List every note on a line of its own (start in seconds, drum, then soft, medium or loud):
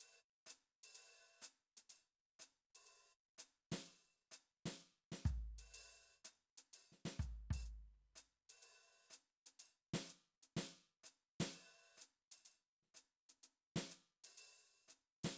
0.01 open hi-hat medium
0.47 closed hi-hat medium
0.47 hi-hat pedal medium
0.84 open hi-hat medium
0.96 open hi-hat medium
1.43 closed hi-hat medium
1.43 hi-hat pedal medium
1.78 open hi-hat medium
1.90 open hi-hat soft
2.40 closed hi-hat medium
2.40 hi-hat pedal medium
2.76 open hi-hat soft
2.87 open hi-hat soft
3.39 closed hi-hat medium
3.39 hi-hat pedal medium
3.73 snare medium
3.73 open hi-hat medium
3.86 open hi-hat soft
4.32 closed hi-hat medium
4.32 hi-hat pedal medium
4.67 snare medium
4.67 open hi-hat medium
4.81 open hi-hat soft
5.13 snare soft
5.25 kick soft
5.25 closed hi-hat soft
5.25 hi-hat pedal soft
5.59 open hi-hat medium
5.75 open hi-hat medium
6.25 hi-hat pedal medium
6.25 open hi-hat medium
6.58 closed hi-hat medium
6.74 open hi-hat soft
6.93 snare soft
7.06 snare medium
7.19 kick soft
7.19 closed hi-hat soft
7.19 hi-hat pedal soft
7.51 kick soft
7.51 open hi-hat medium
7.66 open hi-hat soft
8.16 closed hi-hat medium
8.16 hi-hat pedal medium
8.50 open hi-hat medium
8.63 open hi-hat soft
9.11 closed hi-hat medium
9.11 hi-hat pedal soft
9.47 closed hi-hat medium
9.60 open hi-hat medium
9.95 snare medium
10.06 closed hi-hat medium
10.06 hi-hat pedal soft
10.44 closed hi-hat soft
10.58 snare medium
10.58 open hi-hat medium
11.04 closed hi-hat medium
11.04 hi-hat pedal soft
11.41 snare medium
11.41 open hi-hat medium
11.54 open hi-hat soft
11.98 closed hi-hat medium
11.98 hi-hat pedal soft
12.32 open hi-hat soft
12.46 open hi-hat soft
12.84 snare soft
12.87 snare soft
12.95 closed hi-hat medium
12.95 hi-hat pedal soft
13.30 closed hi-hat soft
13.44 closed hi-hat soft
13.77 snare medium
13.90 closed hi-hat medium
13.90 hi-hat pedal soft
14.25 open hi-hat medium
14.38 open hi-hat medium
14.89 closed hi-hat soft
14.89 hi-hat pedal soft
15.24 snare medium
15.24 open hi-hat medium